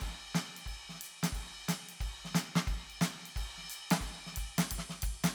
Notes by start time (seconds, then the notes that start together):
0.01 kick, ride
0.34 snare, ride
0.56 ride
0.66 kick, ride
0.89 snare
0.94 snare
1.01 hi-hat pedal, ride
1.23 snare, ride
1.32 kick, ride
1.68 snare, hi-hat pedal, ride
1.89 ride
2.00 kick, ride
2.24 snare
2.31 snare
2.34 snare, hi-hat pedal
2.55 snare
2.67 kick, ride
2.90 ride
3.01 snare, hi-hat pedal, ride
3.25 ride
3.36 kick, ride
3.57 snare
3.63 snare
3.70 hi-hat pedal, ride
3.90 snare, ride
4.00 kick, ride
4.26 snare
4.32 snare, ride
4.37 kick, hi-hat pedal
4.58 snare, ride
4.71 kick, ride
4.78 snare
4.89 snare
4.94 snare
5.02 kick, hi-hat pedal, ride
5.24 snare, ride